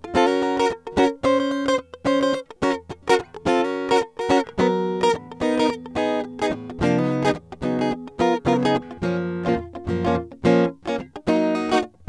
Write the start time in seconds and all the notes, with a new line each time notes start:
0.06 F4
0.17 C4 F4 A4
0.28 C#4 F#4 A#4
0.43 F#4 A#4
0.60 F#4 A#4
0.69 F4
0.99 C#4 F#4 A#4
1.25 C#4 C5
1.40 C5
1.52 C5
2.07 C#4 C5
2.22 C#4 C5
2.36 C5
2.64 C#4 F#4 A#4
3.09 C#4 F#4 A#4
3.48 C4 F4 A4
3.61 C#4 F#4
3.66 A#4
3.90 C#4 F#4 A#4
4.21 F#4 A#4
4.31 C#4 F#4 A#4
4.59 F#3 B3 A#4
5.03 B3 A#4
5.42 B3 D#4 A#4
5.60 B3 D#4 A#4
5.97 B3 D#4 G#4
6.41 B3 D#4 G#4
6.51 A2
6.81 C3 F3 A#3 D4
6.87 G4
6.96 B3 G#4
7.01 C#3 D#4
7.24 B3 D#4 G#4
7.63 C#3 F#3 B3 D#4
7.67 G#4
7.81 B3 D#4 G#4
8.20 F3 B3 F4 A#4
8.46 C#3 F#3 B3 F4 A#4
8.64 B3 D#4 G#4
8.92 F4
9.04 F#2 F3 A#3 C#4
9.45 C#4 F4
9.50 F3 A#3
9.59 E2
9.77 C#4 F4
9.87 F#2 F3 A#3
10.01 F3
10.06 A#3 C#4 F4
10.46 F3 A#3 C#4 F4
10.87 A#3 C#4 F4
11.28 F#3 A#3 D#4 F#4
11.56 D#4 F#4
11.74 A#3 D#4 F#4